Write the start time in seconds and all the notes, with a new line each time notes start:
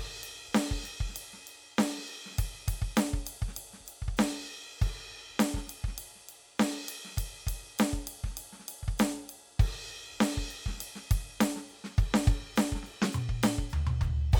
0.23 ride
0.48 kick
0.55 snare, hi-hat pedal, ride
0.71 kick
0.83 snare, hi-hat pedal, ride
1.00 kick
1.09 snare
1.14 hi-hat pedal, ride
1.33 snare
1.47 ride
1.77 snare, hi-hat pedal, ride
1.98 snare
2.02 snare
2.08 ride
2.26 snare
2.31 snare
2.35 kick, snare, hi-hat pedal, ride
2.68 kick, ride
2.82 kick
2.96 snare, hi-hat pedal, ride
3.13 kick
3.26 hi-hat pedal, ride
3.42 kick
3.48 snare
3.54 hi-hat pedal, ride
3.73 snare
3.80 kick, snare
3.83 snare, hi-hat pedal
3.88 ride
4.02 kick
4.08 kick
4.17 snare, hi-hat pedal, ride
4.82 kick, ride
5.30 kick
5.39 snare, hi-hat pedal, ride
5.54 kick, snare
5.67 snare, hi-hat pedal, ride
5.84 kick
5.88 snare
5.98 ride
6.16 snare
6.29 ride
6.57 snare, hi-hat pedal, ride
6.88 ride
7.05 snare
7.08 snare
7.12 snare
7.17 kick, hi-hat pedal, ride
7.47 kick, ride
7.78 snare, hi-hat pedal, ride
7.93 kick
8.07 hi-hat pedal, ride
8.24 kick, snare
8.29 snare
8.32 snare
8.35 snare, hi-hat pedal, ride
8.53 snare
8.60 snare
8.63 snare
8.67 snare, hi-hat pedal, ride
8.83 kick
8.88 kick, ride
8.98 snare, hi-hat pedal, ride
9.29 ride
9.60 kick, ride
10.13 kick
10.20 snare, hi-hat pedal, ride
10.37 kick
10.42 snare
10.48 snare, ride
10.66 kick, snare
10.73 snare
10.77 snare
10.81 snare, hi-hat pedal, ride
10.96 snare
11.11 kick, ride
11.40 snare, hi-hat pedal, ride
11.56 snare
11.65 snare
11.69 snare, ride
11.84 snare
11.89 snare
11.97 kick, hi-hat pedal, ride
12.14 snare
12.27 kick, hi-hat pedal, ride
12.56 snare, hi-hat pedal, ride
12.72 kick, snare
12.83 snare, ride
13.02 snare
13.13 hi-hat pedal, mid tom
13.29 kick
13.43 snare, hi-hat pedal, ride bell
13.58 kick
13.70 floor tom, hi-hat pedal
13.87 mid tom
14.01 kick, floor tom, hi-hat pedal
14.30 kick, hi-hat pedal
14.33 kick, crash